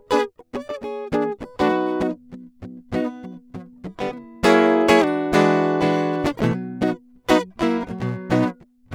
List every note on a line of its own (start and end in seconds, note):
0.12 0.32 A#3
0.12 0.29 D4
0.12 0.34 G#4
0.12 0.33 B4
0.55 0.67 B3
0.55 0.64 G4
0.55 0.67 C#5
0.71 0.84 A4
0.71 0.82 D5
0.83 1.05 A#3
0.83 1.11 G#4
0.83 1.09 C#5
1.14 1.36 E3
1.14 1.36 A#3
1.14 1.32 D4
1.14 1.39 G#4
1.14 1.29 B4
1.42 1.54 E3
1.42 1.58 B4
1.61 1.71 E3
1.61 1.73 A3
1.61 1.71 D4
1.61 2.02 F#4
1.61 2.06 B4
1.71 2.02 F#3
1.71 2.01 B3
1.71 2.02 D#4
2.02 2.20 F#3
2.02 2.18 B3
2.02 2.20 D#4
2.02 2.18 F#4
2.33 2.44 F#3
2.33 2.54 B3
2.64 2.84 F#3
2.64 2.84 B3
2.94 3.05 F#3
2.94 3.09 B3
2.94 3.12 D#4
2.94 3.12 F#4
2.94 3.06 B4
3.08 3.26 B3
3.08 3.45 B4
3.25 3.43 F#3
3.25 3.43 B3
3.56 3.73 F#3
3.56 3.72 B3
3.86 3.99 F#3
4.01 4.12 G3
4.01 4.18 B3
4.16 4.41 A#3
4.46 4.92 F#3
4.46 4.92 A#3
4.46 4.91 E4
4.46 4.90 G#4
4.46 4.90 C#5
4.90 5.01 F#3
4.90 5.02 A#3
4.90 5.04 E4
4.90 5.03 G#4
4.90 5.05 C#5
5.02 5.33 E3
5.02 5.21 G#3
5.02 5.36 D4
5.02 5.36 F#4
5.34 5.85 E3
5.34 5.84 G#3
5.34 5.84 D4
5.34 5.83 F#4
5.34 5.82 B4
5.82 6.22 E3
5.82 6.20 G#3
5.82 6.27 D4
5.82 6.34 F#4
5.82 6.29 B4
6.26 6.44 A#2
6.26 6.36 D4
6.41 6.55 E3
6.41 6.55 A3
6.41 6.56 D4
6.41 6.84 F#4
6.45 6.54 B2
6.55 6.82 B2
6.55 6.83 F#3
6.55 6.82 B3
6.83 6.96 B2
6.83 7.00 F#3
6.83 6.99 B3
6.83 7.00 D#4
6.83 7.02 F#4
6.83 7.03 B4
7.30 7.47 B3
7.30 7.45 D#4
7.30 7.48 F#4
7.30 7.49 B4
7.34 7.45 F#3
7.61 7.88 A#3
7.61 7.89 E4
7.61 7.85 E4
7.65 7.89 F#3
7.90 8.04 F#3
7.90 7.98 A#3
8.00 8.21 B2
8.00 8.30 F#3
8.00 8.30 B3
8.32 8.51 B2
8.32 8.58 F#3
8.32 8.56 B3
8.32 8.56 D#4
8.32 8.51 F#4
8.32 8.59 B4